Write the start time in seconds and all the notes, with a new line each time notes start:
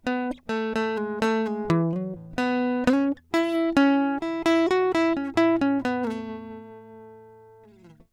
0.08 B3
0.51 A3
0.78 A3
0.99 G#3
1.24 A3
1.48 G#3
1.72 E3
1.93 F#3
2.40 B3
2.90 C#4
3.35 E4
3.78 C#4
4.24 E4
4.48 E4
4.73 F#4
4.97 E4
5.19 C#4
5.39 E4
5.63 C#4
5.87 B3
6.06 A3